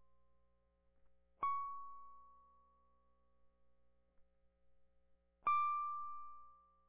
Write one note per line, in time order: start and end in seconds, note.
1.43 2.81 C#6
5.47 6.89 D6